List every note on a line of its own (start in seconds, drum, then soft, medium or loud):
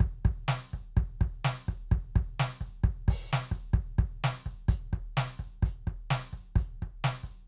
0.01 kick loud
0.26 kick loud
0.49 snare loud
0.66 snare soft
0.74 kick medium
0.97 kick loud
1.22 kick loud
1.45 snare loud
1.63 snare soft
1.69 kick medium
1.92 kick loud
2.16 kick loud
2.40 snare loud
2.56 snare soft
2.61 kick medium
2.84 kick loud
3.09 open hi-hat loud
3.09 kick loud
3.31 snare loud
3.31 hi-hat pedal medium
3.52 kick medium
3.74 kick loud
3.99 kick loud
4.25 snare loud
4.33 snare soft
4.47 kick medium
4.69 closed hi-hat loud
4.69 kick loud
4.94 kick loud
5.18 closed hi-hat loud
5.18 snare loud
5.27 snare soft
5.40 kick medium
5.63 closed hi-hat medium
5.63 kick loud
5.88 kick medium
6.11 closed hi-hat loud
6.11 snare loud
6.19 snare soft
6.34 kick medium
6.56 closed hi-hat medium
6.56 kick loud
6.83 kick medium
7.05 closed hi-hat loud
7.05 snare loud
7.24 kick medium